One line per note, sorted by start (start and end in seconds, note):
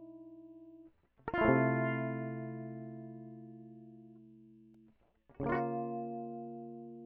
1.34 4.19 F4
1.38 4.94 A3
1.38 4.91 E4
1.49 4.91 C3
5.41 7.05 C#3
5.46 7.05 A#3
5.46 7.05 F4
5.52 5.61 F#4